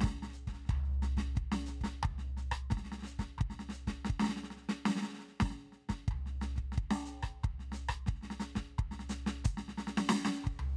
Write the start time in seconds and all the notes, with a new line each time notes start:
0.01 kick, snare
0.05 snare
0.09 snare
0.15 snare
0.23 snare
0.28 snare
0.34 hi-hat pedal
0.47 kick, snare
0.53 snare
0.57 snare
0.62 snare
0.66 kick, snare
0.69 snare, floor tom
0.84 snare
0.88 snare
0.91 snare
1.02 snare, hi-hat pedal
1.17 kick, snare
1.35 kick, snare
1.52 snare
1.66 snare, hi-hat pedal
1.81 kick, snare
2.03 kick, floor tom
2.18 snare
2.37 snare, hi-hat pedal
2.52 kick, cross-stick
2.71 kick, snare
2.77 snare
2.83 snare
2.85 snare
2.92 snare
2.99 snare
3.03 snare
3.07 hi-hat pedal
3.19 kick, snare
3.38 kick, floor tom
3.50 snare
3.60 snare
3.69 snare, hi-hat pedal
3.87 kick, snare
4.05 snare
4.10 kick
4.20 snare
4.23 snare
4.25 snare
4.29 snare
4.36 snare
4.44 snare
4.51 snare
4.57 snare
4.62 snare
4.69 snare
4.86 snare
4.90 snare
4.96 snare
5.01 snare
5.08 snare
5.13 snare
5.19 snare
5.23 snare
5.28 snare
5.32 snare
5.36 snare
5.40 kick, snare
5.46 cross-stick
5.51 snare
5.55 snare
5.58 snare
5.66 snare
5.72 snare
5.81 snare
5.89 kick, snare
6.08 kick, floor tom
6.26 snare
6.41 snare, hi-hat pedal
6.56 kick, snare
6.72 snare
6.78 kick
6.91 snare
7.06 snare, hi-hat pedal
7.23 kick, cross-stick
7.44 kick, floor tom
7.60 snare
7.72 snare, hi-hat pedal
7.89 kick, cross-stick
8.07 kick, snare
8.15 snare
8.22 snare
8.30 snare
8.40 snare, hi-hat pedal
8.56 kick, snare
8.79 kick, floor tom
8.91 snare
9.00 snare
9.10 snare, hi-hat pedal
9.27 snare
9.45 kick, snare, hi-hat pedal
9.55 kick, snare
9.68 snare
9.78 snare
9.87 snare
9.98 snare
10.09 snare, hi-hat pedal
10.25 snare
10.44 kick, floor tom
10.59 floor tom